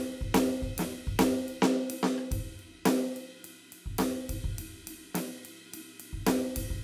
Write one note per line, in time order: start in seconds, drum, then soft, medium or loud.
0.21 kick medium
0.34 snare loud
0.34 ride loud
0.62 kick medium
0.78 snare loud
0.78 ride loud
1.07 kick medium
1.19 snare loud
1.19 ride loud
1.48 ride medium
1.62 snare loud
1.90 ride loud
2.03 snare loud
2.18 cross-stick medium
2.31 kick medium
2.31 ride loud
2.59 ride soft
2.85 snare loud
2.85 ride loud
3.16 ride medium
3.44 ride medium
3.72 ride medium
3.86 kick soft
3.98 snare loud
3.98 ride loud
4.29 kick medium
4.29 ride loud
4.44 kick medium
4.58 ride loud
4.87 ride loud
5.14 snare loud
5.14 ride loud
5.45 ride medium
5.74 ride loud
6.00 ride medium
6.13 kick soft
6.26 snare loud
6.26 ride loud
6.56 kick medium
6.56 ride loud
6.70 kick medium